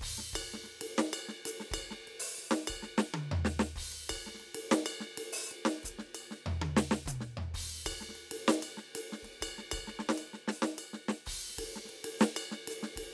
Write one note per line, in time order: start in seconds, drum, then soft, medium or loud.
0.01 kick soft
0.01 hi-hat pedal soft
0.01 crash loud
0.11 kick soft
0.18 snare soft
0.33 kick soft
0.33 ride bell loud
0.54 snare soft
0.64 snare soft
0.64 ride soft
0.81 ride loud
0.98 snare loud
1.13 ride bell loud
1.29 snare soft
1.46 hi-hat pedal loud
1.46 ride loud
1.60 snare soft
1.71 kick soft
1.71 ride bell loud
1.78 kick soft
1.91 snare soft
2.07 ride medium
2.20 open hi-hat loud
2.38 ride medium
2.51 snare loud
2.67 kick soft
2.67 ride bell loud
2.83 snare soft
2.98 snare loud
3.14 high tom loud
3.31 floor tom loud
3.45 snare medium
3.59 snare loud
3.76 kick soft
3.76 crash medium
3.82 kick soft
3.92 cross-stick soft
4.09 kick soft
4.09 ride bell loud
4.26 snare soft
4.34 snare soft
4.40 snare soft
4.40 ride soft
4.45 snare soft
4.55 ride loud
4.71 snare loud
4.86 ride bell loud
5.00 snare soft
5.18 ride loud
5.33 open hi-hat loud
5.51 ride medium
5.65 snare loud
5.83 kick soft
5.83 hi-hat pedal loud
5.83 ride medium
5.99 snare soft
6.15 ride bell loud
6.31 snare soft
6.46 floor tom loud
6.62 high tom loud
6.77 snare loud
6.91 snare loud
7.06 kick soft
7.06 hi-hat pedal loud
7.06 mid tom medium
7.11 kick soft
7.21 snare soft
7.37 floor tom medium
7.54 kick soft
7.54 crash loud
7.86 kick soft
7.86 ride bell loud
8.01 snare soft
8.09 snare soft
8.15 ride medium
8.31 ride loud
8.48 snare loud
8.48 hi-hat pedal loud
8.62 ride bell loud
8.77 snare soft
8.95 hi-hat pedal medium
8.95 ride loud
9.12 snare soft
9.23 kick soft
9.23 snare soft
9.23 ride medium
9.41 kick soft
9.41 ride bell loud
9.58 snare soft
9.72 kick soft
9.72 ride bell loud
9.79 kick soft
9.87 snare soft
9.99 snare medium
10.09 snare loud
10.14 hi-hat pedal soft
10.14 ride bell medium
10.33 snare soft
10.48 snare medium
10.48 hi-hat pedal medium
10.62 snare medium
10.78 hi-hat pedal soft
10.78 ride bell loud
10.93 snare soft
11.08 snare medium
11.26 kick soft
11.26 crash loud
11.49 snare soft
11.58 kick soft
11.58 ride loud
11.76 snare soft
11.85 snare soft
11.89 ride medium
12.04 ride loud
12.19 snare loud
12.19 hi-hat pedal medium
12.36 ride bell loud
12.51 snare medium
12.68 hi-hat pedal medium
12.68 ride loud
12.83 snare medium
12.96 kick soft
12.96 ride loud
13.10 hi-hat pedal soft